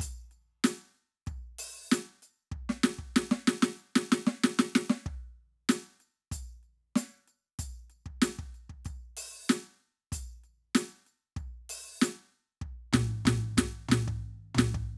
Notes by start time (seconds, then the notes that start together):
0.01 kick, percussion
0.32 percussion
0.65 snare, percussion
0.96 percussion
1.28 kick, percussion
1.60 percussion
1.93 snare, percussion
2.24 percussion
2.53 kick
2.71 snare
2.85 snare
3.00 kick
3.17 snare
3.33 snare
3.49 snare
3.64 snare
3.79 percussion
3.97 snare
4.13 snare
4.28 snare
4.45 snare
4.60 snare
4.76 snare
4.91 snare
5.07 kick
5.70 snare, percussion
6.01 percussion
6.33 kick, percussion
6.64 percussion
6.97 snare, percussion
7.29 percussion
7.60 kick, percussion
7.91 percussion
8.07 kick
8.23 snare, percussion
8.40 kick
8.56 percussion
8.71 kick
8.86 kick, percussion
9.18 percussion
9.50 snare, percussion
10.13 kick, percussion
10.45 percussion
10.76 snare, percussion
11.08 percussion
11.38 kick, percussion
11.71 percussion
12.03 snare, percussion
12.63 kick
12.94 kick, snare, floor tom
13.27 kick, snare, floor tom
13.59 kick, snare, floor tom
13.90 kick, snare, floor tom
14.09 kick
14.56 kick, snare, floor tom
14.76 kick